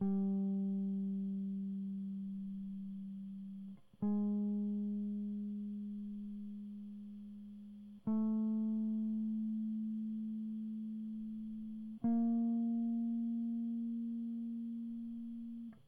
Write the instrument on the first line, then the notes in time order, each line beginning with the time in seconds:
electric guitar
0.02 G3
4.03 G#3
8.08 A3
12.04 A#3